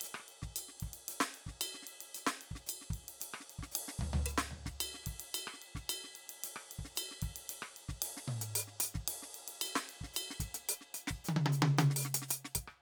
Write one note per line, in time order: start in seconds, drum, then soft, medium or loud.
0.01 hi-hat pedal medium
0.01 ride medium
0.14 cross-stick medium
0.20 cross-stick soft
0.28 ride soft
0.42 kick soft
0.42 snare soft
0.48 kick soft
0.56 hi-hat pedal medium
0.56 ride bell medium
0.68 snare soft
0.77 snare soft
0.77 ride medium
0.82 kick soft
0.86 snare soft
0.92 snare soft
0.92 ride medium
1.08 hi-hat pedal medium
1.08 ride medium
1.20 snare loud
1.34 ride soft
1.46 kick soft
1.46 snare soft
1.61 hi-hat pedal medium
1.61 ride bell loud
1.74 snare soft
1.82 snare soft
1.87 ride medium
2.01 ride medium
2.15 hi-hat pedal medium
2.15 ride bell medium
2.27 snare loud
2.41 ride soft
2.51 kick soft
2.55 snare soft
2.66 hi-hat pedal medium
2.66 ride bell medium
2.81 snare soft
2.89 kick soft
2.89 cross-stick soft
2.94 kick soft
2.94 ride soft
3.03 snare soft
3.08 snare soft
3.08 ride medium
3.20 hi-hat pedal medium
3.20 ride medium
3.34 cross-stick medium
3.40 snare soft
3.50 ride soft
3.59 kick soft
3.63 snare soft
3.72 hi-hat pedal medium
3.72 ride loud
3.88 snare medium
3.99 kick soft
3.99 floor tom medium
4.05 kick soft
4.13 floor tom loud
4.26 hi-hat pedal medium
4.26 percussion loud
4.38 snare loud
4.51 floor tom soft
4.66 kick soft
4.66 snare medium
4.80 hi-hat pedal medium
4.80 ride bell loud
4.94 snare soft
5.03 kick soft
5.03 cross-stick soft
5.03 ride medium
5.12 kick soft
5.18 snare soft
5.18 ride medium
5.22 snare soft
5.34 hi-hat pedal medium
5.34 ride bell loud
5.47 cross-stick medium
5.54 snare soft
5.62 ride soft
5.75 kick soft
5.75 snare soft
5.89 hi-hat pedal medium
5.89 ride bell loud
6.04 snare soft
6.15 ride soft
6.26 snare soft
6.26 ride medium
6.30 snare soft
6.44 hi-hat pedal medium
6.44 ride medium
6.56 cross-stick medium
6.71 ride medium
6.79 kick soft
6.85 snare soft
6.96 hi-hat pedal medium
6.96 ride bell loud
7.11 snare soft
7.19 kick soft
7.19 cross-stick soft
7.19 ride medium
7.29 kick soft
7.36 snare soft
7.36 ride medium
7.49 hi-hat pedal medium
7.49 ride medium
7.62 cross-stick medium
7.76 ride soft
7.89 kick soft
7.89 snare soft
8.02 hi-hat pedal medium
8.02 ride loud
8.17 snare soft
8.28 mid tom medium
8.41 closed hi-hat medium
8.55 closed hi-hat loud
8.60 hi-hat pedal medium
8.67 snare soft
8.80 closed hi-hat loud
8.94 kick soft
8.94 snare soft
9.08 hi-hat pedal medium
9.08 ride loud
9.22 snare soft
9.34 ride medium
9.48 ride medium
9.61 hi-hat pedal medium
9.61 ride bell loud
9.76 snare medium
9.89 ride soft
10.01 kick soft
10.01 snare soft
10.14 hi-hat pedal medium
10.14 ride bell loud
10.30 snare medium
10.40 kick soft
10.40 snare soft
10.40 closed hi-hat medium
10.46 kick soft
10.54 closed hi-hat medium
10.69 closed hi-hat loud
10.69 hi-hat pedal medium
10.81 snare soft
10.94 closed hi-hat medium
11.07 kick soft
11.07 snare medium
11.24 hi-hat pedal loud
11.29 high tom medium
11.36 high tom loud
11.46 high tom loud
11.52 hi-hat pedal medium
11.62 high tom loud
11.78 hi-hat pedal medium
11.78 high tom loud
11.90 snare medium
11.96 closed hi-hat loud
12.02 snare medium
12.02 hi-hat pedal medium
12.14 closed hi-hat loud
12.22 snare soft
12.28 closed hi-hat loud
12.28 hi-hat pedal medium
12.45 snare medium
12.55 kick soft
12.55 closed hi-hat loud
12.55 hi-hat pedal medium
12.68 cross-stick medium